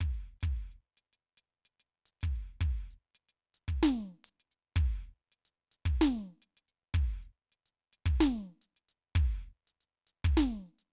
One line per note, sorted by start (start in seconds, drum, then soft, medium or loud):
0.01 kick medium
0.01 closed hi-hat medium
0.14 closed hi-hat medium
0.41 kick medium
0.41 closed hi-hat medium
0.57 closed hi-hat medium
0.72 closed hi-hat medium
0.98 closed hi-hat medium
1.14 closed hi-hat medium
1.38 closed hi-hat loud
1.66 closed hi-hat medium
1.80 closed hi-hat medium
2.06 closed hi-hat medium
2.21 kick medium
2.21 closed hi-hat medium
2.36 closed hi-hat medium
2.61 kick medium
2.61 closed hi-hat medium
2.78 closed hi-hat soft
2.91 closed hi-hat medium
3.15 closed hi-hat loud
3.29 closed hi-hat medium
3.55 closed hi-hat medium
3.69 kick medium
3.83 snare loud
3.96 closed hi-hat soft
4.25 closed hi-hat loud
4.40 closed hi-hat medium
4.52 closed hi-hat soft
4.76 kick medium
4.76 closed hi-hat medium
4.90 closed hi-hat soft
5.04 closed hi-hat soft
5.32 closed hi-hat medium
5.46 closed hi-hat medium
5.72 closed hi-hat medium
5.86 kick medium
6.02 snare loud
6.14 closed hi-hat soft
6.42 closed hi-hat loud
6.57 closed hi-hat loud
6.69 closed hi-hat soft
6.95 kick medium
6.95 closed hi-hat medium
7.09 closed hi-hat medium
7.23 closed hi-hat medium
7.52 closed hi-hat medium
7.66 closed hi-hat medium
7.93 closed hi-hat loud
8.06 kick medium
8.21 snare loud
8.62 closed hi-hat medium
8.77 closed hi-hat medium
8.89 closed hi-hat medium
9.16 kick medium
9.16 closed hi-hat medium
9.29 closed hi-hat medium
9.43 closed hi-hat soft
9.68 closed hi-hat medium
9.81 closed hi-hat medium
10.07 closed hi-hat medium
10.25 kick medium
10.38 snare loud
10.67 closed hi-hat soft
10.79 closed hi-hat medium